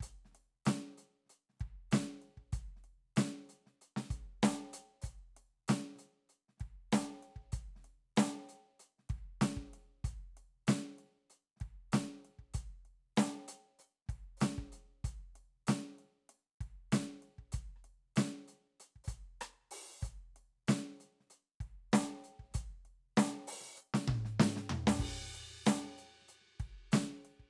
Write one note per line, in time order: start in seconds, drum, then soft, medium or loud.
0.01 closed hi-hat medium
0.01 kick soft
0.06 snare soft
0.25 snare soft
0.32 snare soft
0.32 closed hi-hat soft
0.66 closed hi-hat medium
0.66 snare loud
0.98 closed hi-hat soft
1.26 closed hi-hat soft
1.26 snare soft
1.50 snare soft
1.53 snare soft
1.57 snare soft
1.57 closed hi-hat soft
1.61 kick soft
1.92 closed hi-hat medium
1.92 snare loud
2.07 snare soft
2.22 closed hi-hat soft
2.38 kick soft
2.53 closed hi-hat medium
2.53 kick soft
2.77 snare soft
2.85 closed hi-hat soft
3.17 closed hi-hat medium
3.17 snare loud
3.50 closed hi-hat soft
3.67 snare soft
3.82 closed hi-hat soft
3.97 snare medium
4.11 closed hi-hat soft
4.11 kick soft
4.43 closed hi-hat medium
4.43 snare loud
4.74 open hi-hat medium
5.02 closed hi-hat soft
5.02 kick soft
5.02 hi-hat pedal medium
5.37 closed hi-hat soft
5.69 closed hi-hat medium
5.69 snare loud
5.96 closed hi-hat soft
5.96 snare soft
6.30 closed hi-hat soft
6.49 snare soft
6.58 kick soft
6.58 snare soft
6.58 closed hi-hat soft
6.93 closed hi-hat medium
6.93 snare medium
7.23 closed hi-hat soft
7.36 kick soft
7.53 closed hi-hat medium
7.53 kick soft
7.76 snare soft
7.79 snare soft
7.84 snare soft
7.84 closed hi-hat soft
8.17 closed hi-hat medium
8.17 snare loud
8.49 closed hi-hat soft
8.80 closed hi-hat soft
8.99 snare soft
9.04 snare soft
9.10 kick soft
9.10 closed hi-hat soft
9.19 kick soft
9.42 closed hi-hat medium
9.42 snare loud
9.57 kick soft
9.74 closed hi-hat soft
10.05 closed hi-hat medium
10.05 kick soft
10.11 kick soft
10.14 kick soft
10.38 closed hi-hat soft
10.68 closed hi-hat medium
10.68 snare loud
10.99 closed hi-hat soft
11.30 closed hi-hat soft
11.57 snare soft
11.57 closed hi-hat soft
11.62 kick soft
11.93 closed hi-hat medium
11.93 snare loud
12.25 closed hi-hat soft
12.39 kick soft
12.54 closed hi-hat medium
12.54 kick soft
12.65 kick soft
12.86 closed hi-hat soft
13.17 closed hi-hat medium
13.17 snare loud
13.49 open hi-hat medium
13.79 hi-hat pedal soft
14.06 kick soft
14.06 snare soft
14.10 closed hi-hat soft
14.38 closed hi-hat medium
14.38 hi-hat pedal soft
14.42 snare medium
14.58 kick soft
14.58 snare soft
14.73 closed hi-hat soft
15.05 closed hi-hat medium
15.05 kick soft
15.36 closed hi-hat soft
15.68 closed hi-hat medium
15.68 snare loud
15.99 closed hi-hat soft
16.30 closed hi-hat soft
16.61 kick soft
16.61 closed hi-hat soft
16.93 closed hi-hat medium
16.93 snare loud
17.23 closed hi-hat soft
17.39 kick soft
17.53 closed hi-hat medium
17.53 kick soft
17.77 cross-stick soft
17.85 closed hi-hat soft
18.17 closed hi-hat medium
18.17 snare loud
18.48 closed hi-hat soft
18.80 closed hi-hat medium
18.96 kick soft
19.05 closed hi-hat medium
19.05 kick soft
19.05 hi-hat pedal soft
19.41 closed hi-hat medium
19.41 cross-stick medium
19.71 open hi-hat medium
20.02 closed hi-hat medium
20.02 kick soft
20.02 hi-hat pedal medium
20.37 closed hi-hat soft
20.68 open hi-hat medium
20.68 snare loud
21.01 closed hi-hat soft
21.20 snare soft
21.24 snare soft
21.28 closed hi-hat soft
21.28 snare soft
21.61 kick soft
21.61 closed hi-hat soft
21.92 closed hi-hat medium
21.92 snare loud
21.92 hi-hat pedal soft
22.24 closed hi-hat soft
22.40 kick soft
22.44 snare soft
22.51 closed hi-hat medium
22.51 snare soft
22.55 kick soft
22.61 kick soft
22.86 closed hi-hat soft
23.17 closed hi-hat medium
23.17 snare loud
23.29 snare soft
23.48 open hi-hat medium
23.61 snare soft
23.65 snare soft
23.78 hi-hat pedal medium
23.94 snare medium
24.08 kick soft
24.08 high tom loud
24.25 snare soft
24.40 snare loud
24.57 snare soft
24.70 mid tom loud
24.88 snare loud
24.95 hi-hat pedal soft
25.00 kick soft
25.00 crash medium
25.22 snare soft
25.26 snare soft
25.30 snare soft
25.35 closed hi-hat soft
25.67 closed hi-hat loud
25.67 snare loud
25.84 snare soft
25.98 closed hi-hat soft
26.22 snare soft
26.29 closed hi-hat soft
26.41 snare soft
26.48 snare soft
26.60 kick soft
26.60 closed hi-hat soft
26.92 closed hi-hat medium
26.92 snare loud
26.92 hi-hat pedal soft
27.25 closed hi-hat soft
27.40 kick soft